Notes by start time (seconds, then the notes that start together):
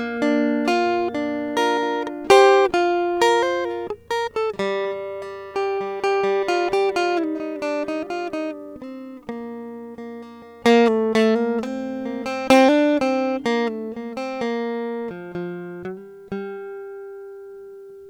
0.00 A#3
0.23 D4
0.69 F4
1.16 D4
1.58 F4 A#4
1.85 F4
2.31 D#4 G4 C5
2.68 D4
2.75 F4
3.23 A#4
3.44 C5
3.66 A#4
4.12 A#4
4.38 A4
4.61 G3
5.58 G4
5.83 G3
6.05 G4
6.25 G3
6.50 F4
6.75 G4
6.98 F4
7.25 D#4
7.37 D#4
7.64 D4
7.90 D#4
8.12 F4
8.35 D#4
8.52 D4
8.84 C4
9.30 A#3
10.00 A#3
10.67 A#3
10.89 A3
11.17 A3
11.36 A#3
11.65 C4
12.07 A#3
12.27 C4
12.52 C4
12.70 D4
13.03 C4
13.47 A#3
13.69 A3
13.99 A#3
14.19 C4
14.43 A#3
15.13 F3
15.37 F3
15.87 F#3
16.34 G3